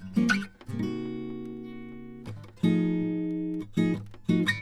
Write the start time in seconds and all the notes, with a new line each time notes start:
0.03 F#2
0.18 F3 A#3 C#4
0.31 D3
0.70 C3 A#3
0.81 D#4 F#4
2.38 D3
2.65 F3 D#4 G#4
3.78 F3 D#4 G#4
4.30 F3 D#4 F#4